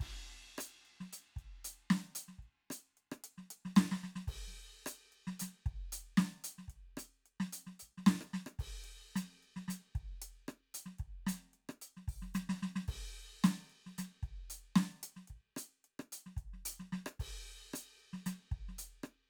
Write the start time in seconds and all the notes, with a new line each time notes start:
0.01 kick, ride
0.59 closed hi-hat, cross-stick
0.86 closed hi-hat
1.01 snare
1.13 closed hi-hat
1.37 kick, closed hi-hat
1.65 closed hi-hat
1.91 snare
2.16 closed hi-hat
2.29 snare
2.39 kick, closed hi-hat
2.71 closed hi-hat, cross-stick
2.98 closed hi-hat
3.12 cross-stick
3.24 closed hi-hat
3.38 snare
3.51 closed hi-hat
3.66 snare
3.76 snare, hi-hat pedal
3.92 snare
4.04 snare
4.16 snare
4.28 kick, crash
4.48 snare
4.87 closed hi-hat, cross-stick
5.13 closed hi-hat
5.27 snare
5.40 closed hi-hat, snare
5.66 kick, closed hi-hat
5.93 closed hi-hat
6.18 snare
6.45 closed hi-hat
6.59 snare
6.68 kick, closed hi-hat
6.98 closed hi-hat, cross-stick
7.26 closed hi-hat
7.41 snare
7.53 closed hi-hat
7.67 snare
7.80 closed hi-hat, kick
7.98 snare
8.07 snare
8.21 cross-stick
8.34 snare
8.47 cross-stick
8.59 kick, crash
8.84 closed hi-hat
9.16 closed hi-hat, snare
9.43 closed hi-hat
9.57 snare
9.69 closed hi-hat, snare
9.96 kick, closed hi-hat
10.12 snare
10.22 closed hi-hat
10.49 cross-stick
10.75 closed hi-hat
10.86 snare
10.99 kick, closed hi-hat
11.27 closed hi-hat, snare
11.54 closed hi-hat
11.70 cross-stick
11.82 closed hi-hat
11.97 snare
12.08 kick, open hi-hat
12.22 snare
12.35 snare, hi-hat pedal
12.50 snare
12.63 snare
12.76 snare
12.89 kick, crash
13.14 closed hi-hat
13.44 closed hi-hat, snare
13.70 closed hi-hat
13.87 snare
13.99 closed hi-hat, snare
14.23 kick, closed hi-hat
14.50 closed hi-hat
14.76 snare
15.04 closed hi-hat
15.17 snare
15.28 kick, closed hi-hat
15.57 closed hi-hat, cross-stick
15.85 closed hi-hat
16.00 cross-stick
16.13 closed hi-hat
16.26 snare
16.37 kick, closed hi-hat
16.54 snare
16.66 closed hi-hat
16.80 snare
16.93 snare
17.07 cross-stick
17.20 kick, crash
17.47 closed hi-hat
17.74 closed hi-hat, cross-stick
18.00 closed hi-hat
18.14 snare
18.27 closed hi-hat, snare
18.52 kick, closed hi-hat
18.69 snare
18.79 closed hi-hat
19.04 cross-stick